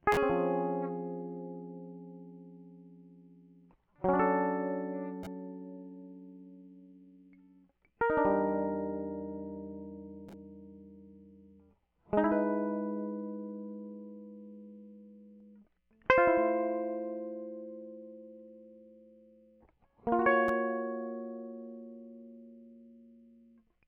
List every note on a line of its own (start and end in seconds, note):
0.08 3.35 G#4
0.16 3.69 C#4
0.23 3.77 C4
0.31 3.77 F3
4.06 7.71 F#3
4.06 7.69 C#4
4.14 7.61 D4
4.20 6.92 A4
8.02 11.73 A#4
8.10 11.55 D#4
8.18 11.77 D4
8.26 11.79 G3
12.14 15.66 G#3
12.14 15.62 D#4
12.25 15.57 E4
12.32 15.59 B4
16.11 19.65 C5
16.19 19.51 F4
16.28 19.74 E4
16.38 19.88 A3
20.08 23.64 A#3
20.13 23.66 F4
20.20 23.21 F#4
20.27 23.19 C#5